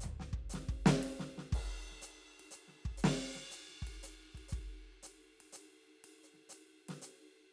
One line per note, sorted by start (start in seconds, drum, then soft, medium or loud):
0.01 floor tom medium
0.01 hi-hat pedal medium
0.20 snare soft
0.33 kick soft
0.50 hi-hat pedal medium
0.50 ride medium
0.54 snare soft
0.69 kick medium
0.86 snare loud
0.86 ride medium
1.03 ride medium
1.20 snare soft
1.38 snare soft
1.53 kick medium
1.53 crash medium
1.91 snare soft
2.02 hi-hat pedal medium
2.02 ride soft
2.40 ride soft
2.51 hi-hat pedal medium
2.56 ride soft
2.68 snare soft
2.86 kick soft
2.98 hi-hat pedal medium
3.04 snare loud
3.04 crash medium
3.36 snare soft
3.52 hi-hat pedal medium
3.52 ride soft
3.69 snare soft
3.82 kick soft
3.87 ride medium
4.03 hi-hat pedal medium
4.03 ride medium
4.35 kick soft
4.35 ride soft
4.49 hi-hat pedal medium
4.53 kick soft
4.53 ride soft
4.93 cross-stick soft
5.03 hi-hat pedal medium
5.03 ride medium
5.41 ride soft
5.53 hi-hat pedal medium
5.53 ride medium
6.04 ride medium
6.24 hi-hat pedal soft
6.34 snare soft
6.50 hi-hat pedal medium
6.50 ride medium
6.89 snare soft
6.89 ride medium
7.02 hi-hat pedal medium
7.02 ride soft